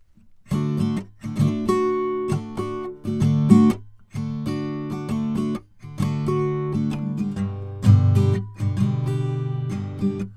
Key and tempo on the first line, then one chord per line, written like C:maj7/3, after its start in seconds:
D major, 130 BPM
0.00 D:maj
7.38 G:maj